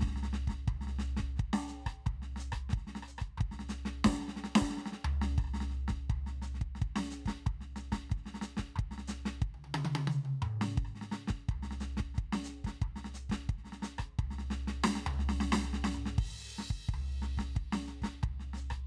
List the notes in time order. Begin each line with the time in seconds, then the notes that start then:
0.01 kick, snare
0.06 snare
0.11 snare
0.16 snare
0.23 snare
0.33 snare, hi-hat pedal
0.48 kick, snare
0.68 kick, floor tom
0.81 snare
0.87 snare
0.99 snare, hi-hat pedal
1.17 kick, snare
1.36 kick, snare
1.54 snare
1.68 snare, hi-hat pedal
1.87 kick, cross-stick
2.06 kick, floor tom
2.22 snare
2.36 snare, hi-hat pedal
2.52 kick, cross-stick
2.70 kick, snare
2.78 snare
2.84 snare
2.87 snare
2.96 snare
3.03 cross-stick
3.08 hi-hat pedal
3.19 kick, cross-stick
3.38 kick, floor tom
3.52 snare
3.60 snare
3.69 snare, hi-hat pedal
3.86 snare
4.05 kick, snare
4.13 snare
4.21 snare
4.28 snare
4.37 snare
4.44 snare
4.56 snare
4.62 kick, snare
4.70 snare
4.77 snare
4.86 snare
4.93 snare
5.05 floor tom
5.22 snare
5.38 kick, cross-stick
5.44 cross-stick
5.48 cross-stick
5.54 snare
5.61 snare
5.68 snare
5.70 snare
5.88 kick, snare
6.10 kick, floor tom
6.27 snare
6.42 snare, hi-hat pedal
6.55 snare
6.62 kick
6.76 snare
6.82 kick
6.96 snare
7.11 snare, hi-hat pedal
7.26 kick, snare
7.47 kick, floor tom
7.61 snare
7.76 snare, hi-hat pedal
7.92 kick, snare
8.10 kick, snare
8.17 snare
8.22 snare
8.26 snare
8.35 snare
8.42 snare, hi-hat pedal
8.57 kick, snare
8.76 kick, floor tom
8.91 snare
8.98 snare
9.08 snare, hi-hat pedal
9.26 snare
9.42 kick
9.54 high tom
9.75 high tom
9.85 high tom
9.96 high tom
10.08 hi-hat pedal, high tom
10.25 high tom
10.42 mid tom
10.62 snare
10.78 kick, snare
10.84 kick, cross-stick
10.90 snare
10.95 snare
11.02 snare
11.12 snare
11.28 kick, snare
11.49 kick, floor tom
11.63 snare
11.71 snare
11.80 snare, hi-hat pedal
11.97 kick, snare
12.15 kick, snare
12.33 snare
12.45 snare, hi-hat pedal
12.65 kick, snare
12.82 kick, floor tom
12.96 snare
13.05 snare
13.14 snare, hi-hat pedal
13.30 kick, snare
13.49 kick, snare
13.58 snare
13.64 snare
13.73 snare
13.80 snare, hi-hat pedal
13.99 kick, cross-stick
14.19 kick, floor tom
14.31 snare
14.39 snare
14.51 snare, hi-hat pedal
14.68 snare
14.84 snare
14.96 snare
15.07 floor tom
15.20 snare
15.29 snare
15.41 snare
15.53 snare
15.64 snare
15.73 snare
15.84 snare
15.95 mid tom
16.06 snare
16.19 kick, crash
16.59 snare
16.71 kick
16.89 kick
16.94 floor tom
17.20 snare, hi-hat pedal
17.38 kick, snare
17.55 kick, snare
17.73 snare
17.86 snare, hi-hat pedal
18.02 kick, snare
18.23 kick, floor tom
18.40 snare
18.54 snare, hi-hat pedal
18.71 kick, cross-stick